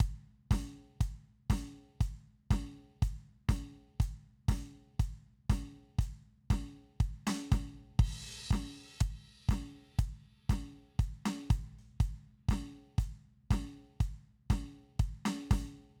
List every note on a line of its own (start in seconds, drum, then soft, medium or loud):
0.00 kick medium
0.00 open hi-hat loud
0.51 kick medium
0.51 snare medium
0.51 open hi-hat loud
1.01 kick medium
1.01 closed hi-hat loud
1.50 kick medium
1.50 snare medium
1.50 open hi-hat loud
2.01 kick medium
2.01 open hi-hat loud
2.51 kick medium
2.51 snare medium
2.51 open hi-hat loud
3.02 kick medium
3.02 open hi-hat loud
3.49 open hi-hat loud
3.49 kick medium
3.49 snare medium
4.00 kick medium
4.00 closed hi-hat loud
4.48 kick medium
4.48 snare medium
4.48 open hi-hat loud
4.99 kick medium
4.99 open hi-hat loud
5.50 open hi-hat loud
5.50 kick medium
5.50 snare medium
5.99 kick medium
5.99 open hi-hat loud
6.50 kick medium
6.50 snare medium
6.50 open hi-hat loud
7.00 kick medium
7.00 open hi-hat medium
7.27 snare loud
7.27 open hi-hat loud
7.52 kick medium
7.52 snare medium
7.52 open hi-hat loud
7.99 kick loud
7.99 crash loud
8.51 kick medium
8.51 snare medium
8.51 open hi-hat loud
9.00 kick medium
9.00 closed hi-hat loud
9.49 kick medium
9.49 snare medium
9.49 open hi-hat loud
9.99 kick medium
9.99 closed hi-hat loud
10.49 kick medium
10.49 snare medium
10.49 closed hi-hat loud
10.99 kick medium
10.99 open hi-hat loud
11.25 snare medium
11.25 open hi-hat loud
11.50 kick medium
11.50 cross-stick soft
11.50 open hi-hat loud
11.79 open hi-hat soft
12.00 kick medium
12.00 open hi-hat loud
12.49 kick medium
12.49 snare medium
12.49 open hi-hat loud
12.98 kick medium
12.98 open hi-hat loud
13.51 kick medium
13.51 snare medium
13.51 open hi-hat loud
14.00 kick medium
14.00 open hi-hat loud
14.50 kick medium
14.50 snare medium
14.50 open hi-hat loud
14.99 kick medium
14.99 open hi-hat loud
15.25 snare loud
15.25 open hi-hat loud
15.51 kick medium
15.51 snare medium
15.51 open hi-hat loud